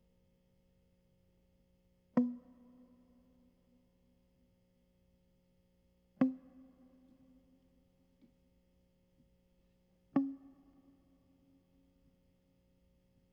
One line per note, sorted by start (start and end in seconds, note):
2.17 2.53 B3
6.22 6.38 C4
10.16 10.38 C#4